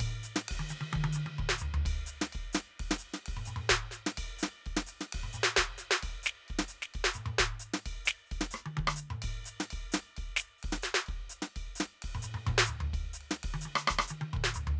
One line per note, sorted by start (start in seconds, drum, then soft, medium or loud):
0.01 kick soft
0.01 ride bell medium
0.07 kick soft
0.24 hi-hat pedal medium
0.24 ride soft
0.37 snare medium
0.49 kick soft
0.49 ride loud
0.57 kick soft
0.57 high tom medium
0.70 hi-hat pedal medium
0.70 high tom medium
0.81 high tom medium
0.94 kick soft
0.94 high tom loud
1.05 high tom loud
1.13 hi-hat pedal medium
1.13 high tom medium
1.27 high tom medium
1.39 kick soft
1.39 mid tom medium
1.46 kick soft
1.46 snare medium
1.59 floor tom medium
1.59 hi-hat pedal medium
1.75 floor tom loud
1.86 kick medium
1.86 ride bell medium
1.93 kick soft
2.07 hi-hat pedal medium
2.07 ride soft
2.22 snare medium
2.33 kick soft
2.33 ride bell medium
2.54 snare medium
2.54 hi-hat pedal medium
2.80 kick soft
2.80 ride medium
2.92 snare medium
2.99 hi-hat pedal medium
3.03 ride soft
3.14 snare medium
3.27 kick soft
3.27 ride medium
3.35 kick soft
3.35 mid tom medium
3.46 hi-hat pedal medium
3.46 mid tom medium
3.57 mid tom medium
3.70 kick soft
3.70 snare loud
3.92 snare soft
3.92 hi-hat pedal medium
4.07 snare medium
4.18 kick soft
4.18 ride bell medium
4.25 kick soft
4.39 hi-hat pedal medium
4.44 snare medium
4.67 kick soft
4.67 ride bell soft
4.77 snare medium
4.87 hi-hat pedal medium
4.87 ride medium
5.01 snare medium
5.13 kick soft
5.13 ride loud
5.21 kick soft
5.21 mid tom medium
5.34 hi-hat pedal medium
5.34 mid tom medium
5.44 snare loud
5.57 kick soft
5.57 snare loud
5.79 snare soft
5.79 hi-hat pedal medium
5.92 snare loud
6.03 kick soft
6.03 ride bell medium
6.10 kick soft
6.24 snare medium
6.24 hi-hat pedal medium
6.49 kick soft
6.49 ride bell soft
6.60 snare medium
6.69 hi-hat pedal medium
6.69 ride soft
6.83 snare medium
6.95 kick soft
6.95 ride bell soft
7.05 snare medium
7.14 hi-hat pedal medium
7.14 mid tom medium
7.27 mid tom medium
7.39 kick soft
7.39 snare loud
7.46 kick soft
7.46 mid tom soft
7.60 hi-hat pedal medium
7.74 snare medium
7.87 kick soft
7.87 ride bell medium
8.06 snare loud
8.06 hi-hat pedal medium
8.27 hi-hat pedal soft
8.32 kick soft
8.32 ride bell soft
8.42 snare medium
8.52 cross-stick medium
8.52 hi-hat pedal medium
8.66 high tom medium
8.78 kick soft
8.78 high tom medium
8.86 kick soft
8.86 cross-stick medium
8.97 hi-hat pedal medium
9.11 mid tom medium
9.23 kick soft
9.23 ride bell medium
9.45 hi-hat pedal medium
9.45 ride soft
9.61 snare medium
9.71 kick soft
9.71 ride bell medium
9.93 snare medium
9.93 hi-hat pedal medium
10.17 kick soft
10.17 ride bell medium
10.37 snare medium
10.37 hi-hat pedal loud
10.59 hi-hat pedal soft
10.64 kick soft
10.64 ride medium
10.73 kick soft
10.73 snare medium
10.83 snare medium
10.83 hi-hat pedal medium
10.95 snare medium
11.07 kick soft
11.07 ride bell soft
11.30 hi-hat pedal medium
11.43 snare medium
11.57 kick soft
11.57 ride bell medium
11.76 hi-hat pedal medium
11.81 snare medium
12.03 kick soft
12.03 ride medium
12.15 mid tom medium
12.23 hi-hat pedal medium
12.23 mid tom medium
12.35 mid tom medium
12.47 kick soft
12.47 mid tom loud
12.55 kick soft
12.55 snare loud
12.66 floor tom medium
12.66 hi-hat pedal medium
12.81 floor tom loud
12.94 kick soft
12.94 ride bell medium
13.01 kick soft
13.14 hi-hat pedal medium
13.22 ride soft
13.32 snare medium
13.44 kick soft
13.44 ride medium
13.54 kick soft
13.54 high tom medium
13.62 hi-hat pedal medium
13.66 high tom medium
13.76 cross-stick medium
13.88 kick soft
13.88 cross-stick loud
13.97 kick soft
13.97 cross-stick loud
14.08 hi-hat pedal medium
14.08 high tom medium
14.22 high tom medium
14.34 kick soft
14.34 mid tom loud
14.45 snare medium
14.55 floor tom medium
14.55 hi-hat pedal medium
14.68 floor tom loud